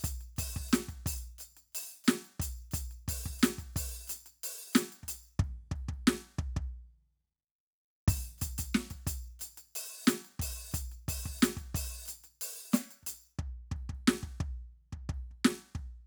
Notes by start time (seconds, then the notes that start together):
0.01 kick, percussion
0.04 percussion
0.21 percussion
0.36 kick, percussion
0.39 percussion
0.56 kick
0.69 percussion
0.73 snare, percussion
0.88 kick, percussion
1.06 kick, percussion
1.38 percussion
1.40 percussion
1.57 percussion
1.72 percussion
1.75 percussion
2.04 snare, percussion
2.08 percussion
2.24 percussion
2.40 kick, percussion
2.71 kick, percussion
2.74 percussion
2.91 percussion
3.08 kick, percussion
3.26 kick
3.39 snare, percussion
3.43 percussion
3.58 kick, percussion
3.73 kick, percussion
3.77 percussion
4.08 percussion
4.09 percussion
4.26 percussion
4.43 percussion
4.73 snare, percussion
4.75 percussion
4.92 percussion
5.03 kick
5.08 percussion
5.39 kick
5.44 ride
5.71 kick
5.76 crash, ride
5.88 kick
5.93 crash, ride
6.07 snare
6.38 kick
6.56 kick
6.62 ride
8.08 kick, percussion
8.38 percussion
8.41 kick, percussion
8.58 kick, percussion
8.74 snare
8.90 kick, percussion
9.07 kick, percussion
9.39 percussion
9.41 percussion
9.57 percussion
9.75 percussion
10.04 snare, percussion
10.08 percussion
10.25 percussion
10.39 kick, percussion
10.72 kick, percussion
10.74 percussion
10.92 percussion
11.08 kick, percussion
11.25 kick
11.39 snare, percussion
11.43 percussion
11.57 kick, percussion
11.74 kick, percussion
12.05 percussion
12.08 percussion
12.24 percussion
12.41 percussion
12.72 snare, percussion
12.74 percussion
12.91 percussion
13.03 kick, percussion
13.39 kick
13.71 kick
13.76 crash
13.89 kick
13.94 snare, crash, ride
14.08 snare
14.23 kick
14.40 kick
14.93 kick
15.09 kick
15.14 crash
15.31 kick
15.45 snare
15.75 kick, snare